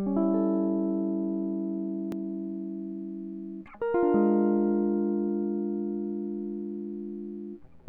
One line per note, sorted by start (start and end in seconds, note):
0.00 3.70 G3
0.07 3.66 C#4
0.17 3.65 E4
0.35 2.27 A4
3.82 6.68 A#4
3.95 7.59 F4
4.03 7.64 D4
4.15 7.58 G#3